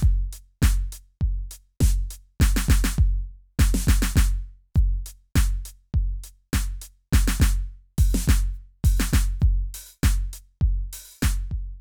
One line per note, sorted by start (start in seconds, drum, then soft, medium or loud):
0.01 kick loud
0.01 hi-hat pedal medium
0.33 closed hi-hat loud
0.63 kick loud
0.63 snare loud
0.93 closed hi-hat loud
1.22 kick loud
1.52 closed hi-hat loud
1.81 kick loud
1.81 snare loud
2.11 closed hi-hat loud
2.41 kick loud
2.41 snare loud
2.57 snare loud
2.69 kick loud
2.69 snare loud
2.85 snare loud
2.99 kick loud
3.28 kick soft
3.32 kick soft
3.60 kick loud
3.60 snare loud
3.75 snare loud
3.88 kick loud
3.88 snare loud
4.03 snare loud
4.17 kick loud
4.17 snare loud
4.75 kick loud
4.75 hi-hat pedal medium
5.07 closed hi-hat loud
5.36 kick loud
5.36 snare loud
5.66 closed hi-hat loud
5.95 kick loud
6.24 closed hi-hat loud
6.54 kick medium
6.54 snare loud
6.82 closed hi-hat loud
7.13 kick loud
7.13 snare loud
7.28 snare loud
7.41 kick loud
7.41 snare loud
7.99 open hi-hat loud
7.99 kick loud
8.15 snare loud
8.28 kick loud
8.28 snare loud
8.54 hi-hat pedal soft
8.84 open hi-hat loud
8.84 kick loud
8.84 hi-hat pedal soft
9.00 snare loud
9.14 kick loud
9.14 snare loud
9.40 kick loud
9.40 hi-hat pedal medium
9.75 open hi-hat loud
10.03 kick loud
10.03 snare loud
10.03 hi-hat pedal soft
10.34 closed hi-hat loud
10.62 kick loud
10.94 open hi-hat loud
11.23 kick loud
11.23 snare loud
11.52 kick medium